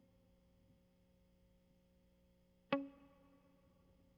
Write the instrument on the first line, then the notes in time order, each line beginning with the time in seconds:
electric guitar
2.73 C#4